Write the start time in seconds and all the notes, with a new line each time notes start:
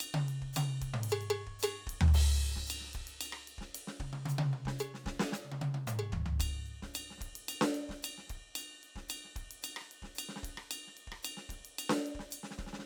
0.01 hi-hat pedal, ride bell
0.15 high tom
0.29 ride
0.42 kick
0.54 hi-hat pedal, high tom, ride bell
0.82 kick, ride
0.94 mid tom
1.04 ride
1.09 hi-hat pedal, percussion
1.22 ride
1.31 percussion
1.47 kick
1.60 hi-hat pedal, ride bell
1.64 percussion
1.87 kick, ride
1.94 kick
2.02 floor tom
2.09 floor tom
2.15 hi-hat pedal, crash
2.56 kick, snare
2.67 hi-hat pedal, ride bell
2.81 snare
2.87 snare
2.94 kick, ride
3.01 kick
3.08 ride
3.21 hi-hat pedal, ride bell
3.33 cross-stick
3.48 ride
3.59 kick, snare
3.75 hi-hat pedal, ride
3.88 snare
4.00 kick, high tom
4.07 kick
4.14 high tom
4.26 hi-hat pedal, high tom
4.39 high tom
4.54 high tom
4.66 kick, snare
4.80 hi-hat pedal, percussion
4.95 snare
5.04 kick, snare
5.07 snare
5.20 snare
5.33 snare, hi-hat pedal
5.45 high tom
5.52 high tom
5.62 high tom
5.75 high tom
5.88 hi-hat pedal, mid tom
6.00 percussion
6.13 kick, floor tom
6.19 kick
6.26 floor tom
6.40 kick, hi-hat pedal, ride bell
6.53 kick
6.67 ride
6.83 kick, snare
6.95 hi-hat pedal, ride bell
7.11 snare
7.18 kick, snare
7.22 ride
7.27 kick
7.36 ride
7.49 hi-hat pedal, ride bell
7.62 snare
7.75 ride
7.90 kick, snare
8.03 hi-hat pedal, ride bell
8.18 snare
8.27 kick, snare, ride
8.33 snare
8.36 snare
8.39 snare
8.42 snare
8.56 hi-hat pedal, ride bell
8.84 ride
8.96 kick, snare
9.09 hi-hat pedal, ride bell
9.25 snare
9.35 kick, snare, ride
9.52 ride
9.63 hi-hat pedal, ride bell
9.77 cross-stick
9.82 cross-stick
9.92 ride
10.03 kick, snare
10.16 hi-hat pedal, ride bell
10.29 snare
10.36 snare
10.44 kick, ride
10.58 cross-stick
10.72 hi-hat pedal, ride bell
10.88 snare
10.98 ride
11.08 kick
11.12 cross-stick
11.23 hi-hat pedal, ride bell
11.37 snare
11.50 kick, snare, ride
11.57 cross-stick, snare
11.66 ride
11.79 hi-hat pedal, ride bell
11.90 snare
11.97 snare
12.07 ride
12.15 kick
12.20 snare
12.31 hi-hat pedal, ride bell
12.44 snare
12.51 snare
12.58 kick, snare
12.65 kick, snare
12.74 snare
12.79 snare